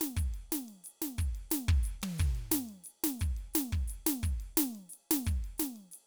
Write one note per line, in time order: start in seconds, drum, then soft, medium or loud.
0.01 snare medium
0.01 ride soft
0.16 kick medium
0.16 hi-hat pedal medium
0.16 ride soft
0.34 ride soft
0.52 snare medium
0.52 hi-hat pedal medium
0.52 ride soft
0.68 ride soft
0.84 hi-hat pedal medium
0.84 ride soft
1.02 snare medium
1.02 ride soft
1.18 kick medium
1.18 hi-hat pedal medium
1.18 ride soft
1.35 ride soft
1.50 snare medium
1.50 hi-hat pedal medium
1.50 ride soft
1.68 kick medium
1.68 ride soft
1.83 hi-hat pedal medium
1.83 ride soft
2.02 high tom loud
2.02 ride soft
2.18 kick medium
2.18 hi-hat pedal medium
2.18 ride soft
2.35 ride soft
2.51 snare medium
2.51 hi-hat pedal medium
2.51 ride soft
2.69 ride soft
2.84 hi-hat pedal medium
2.84 ride soft
3.04 snare medium
3.04 ride soft
3.19 kick medium
3.19 hi-hat pedal medium
3.19 ride soft
3.37 ride soft
3.54 snare medium
3.54 hi-hat pedal medium
3.54 ride soft
3.72 kick medium
3.72 ride soft
3.88 hi-hat pedal medium
3.88 ride soft
4.06 snare medium
4.23 kick medium
4.23 hi-hat pedal medium
4.23 ride soft
4.40 ride soft
4.57 snare medium
4.57 hi-hat pedal medium
4.75 ride soft
4.89 hi-hat pedal medium
4.94 ride soft
5.11 snare medium
5.25 kick medium
5.25 hi-hat pedal medium
5.25 ride soft
5.44 ride soft
5.58 snare medium
5.58 hi-hat pedal medium
5.58 ride soft
5.76 ride soft
5.91 hi-hat pedal medium
5.91 ride soft